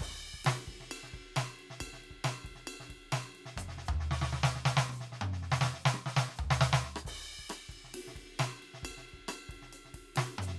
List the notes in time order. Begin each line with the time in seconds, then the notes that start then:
0.01 kick, hi-hat pedal, crash
0.09 kick, cross-stick
0.14 kick
0.34 kick
0.40 kick
0.44 kick, snare, hi-hat pedal, ride
0.68 kick, ride
0.80 snare
0.91 hi-hat pedal, ride bell
1.04 snare
1.14 kick, ride
1.37 snare, hi-hat pedal, ride bell
1.59 ride
1.71 snare
1.81 kick, hi-hat pedal, ride bell
1.87 kick
1.93 snare
2.04 ride
2.11 kick
2.25 snare, hi-hat pedal, ride bell
2.45 kick, ride
2.51 kick
2.56 snare
2.68 hi-hat pedal, ride bell
2.80 snare
2.90 kick, ride
2.95 kick
3.12 snare, hi-hat pedal, ride bell
3.35 ride
3.46 snare
3.57 kick, hi-hat pedal, mid tom
3.64 kick
3.69 snare
3.78 snare
3.86 hi-hat pedal, floor tom
4.00 snare
4.11 snare
4.22 snare
4.33 snare
4.44 snare
4.56 snare
4.66 snare
4.77 snare
4.90 hi-hat pedal, high tom
5.01 snare
5.12 snare
5.21 hi-hat pedal, mid tom
5.33 snare
5.43 snare
5.50 snare, hi-hat pedal
5.61 snare
5.65 snare
5.74 snare
5.81 hi-hat pedal
5.86 snare
5.94 cross-stick
5.97 cross-stick
6.06 snare, hi-hat pedal
6.17 snare
6.29 snare
6.36 hi-hat pedal, floor tom
6.51 snare
6.59 kick, snare, hi-hat pedal
6.73 snare
6.81 snare, hi-hat pedal
6.96 cross-stick
7.06 kick, hi-hat pedal, crash
7.12 kick
7.39 kick
7.44 kick
7.50 cross-stick, hi-hat pedal, ride bell
7.69 kick, ride
7.75 kick
7.84 snare
7.94 hi-hat pedal, ride
8.08 snare
8.16 kick, ride
8.40 snare, hi-hat pedal, ride bell
8.63 ride
8.74 snare
8.83 kick, hi-hat pedal, ride bell
8.90 kick
8.98 snare
9.09 ride
9.14 kick
9.19 kick
9.28 cross-stick, hi-hat pedal, ride bell
9.49 kick, ride
9.55 kick
9.62 snare
9.73 hi-hat pedal, ride bell
9.85 snare
9.94 kick, ride
10.15 snare, hi-hat pedal, ride
10.39 hi-hat pedal, mid tom
10.48 snare